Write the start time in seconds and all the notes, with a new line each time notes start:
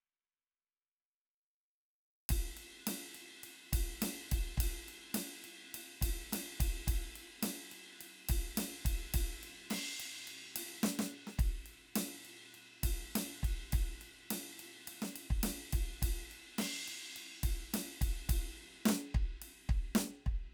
2.29 kick, ride
2.57 ride
2.87 snare, ride
3.15 ride
3.43 ride
3.73 kick, ride
4.02 snare, ride
4.31 kick, ride
4.57 kick, ride
4.88 ride
5.14 snare, ride
5.44 ride
5.74 ride
6.01 kick, ride
6.32 snare, ride
6.60 kick, ride
6.87 kick, ride
7.15 ride
7.43 snare, ride
7.71 ride
8.01 ride
8.29 kick, ride
8.57 snare, ride
8.85 kick, ride
9.14 kick, ride
9.43 ride
9.70 snare, ride
10.00 ride
10.27 ride
10.56 ride
10.83 snare
10.99 snare
11.27 snare
11.39 kick, ride
11.66 ride
11.95 snare, ride
12.25 ride
12.54 ride
12.83 kick, ride
13.15 snare, ride
13.43 kick, ride
13.72 kick, ride
14.01 ride
14.30 snare, ride
14.59 ride
14.87 ride
15.02 snare
15.16 ride
15.30 kick
15.43 snare, ride
15.73 kick, ride
16.02 kick, ride
16.31 ride
16.58 snare, ride
16.88 ride
17.16 ride
17.43 kick, ride
17.74 snare, ride
18.01 kick, ride
18.29 kick, ride
18.85 snare
18.89 snare
19.14 kick
19.42 ride
19.69 kick
19.95 snare
19.99 cross-stick
20.26 kick